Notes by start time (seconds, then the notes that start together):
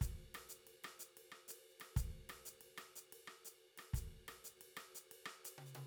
0.01 kick, hi-hat pedal, ride
0.34 cross-stick, ride
0.49 hi-hat pedal
0.67 ride
0.84 cross-stick, ride
0.99 hi-hat pedal
1.17 ride
1.32 cross-stick
1.48 hi-hat pedal, ride
1.69 hi-hat pedal
1.80 cross-stick, ride
1.96 kick, hi-hat pedal, ride
2.29 cross-stick, ride
2.45 hi-hat pedal
2.61 ride
2.78 cross-stick, ride
2.96 hi-hat pedal
3.12 ride
3.28 cross-stick
3.45 hi-hat pedal, ride
3.78 cross-stick, ride
3.94 kick, hi-hat pedal, ride
4.28 cross-stick, ride
4.44 hi-hat pedal
4.61 ride
4.77 cross-stick, ride
4.95 hi-hat pedal
5.11 ride
5.26 cross-stick
5.45 hi-hat pedal, ride
5.58 high tom
5.66 hi-hat pedal
5.75 high tom, ride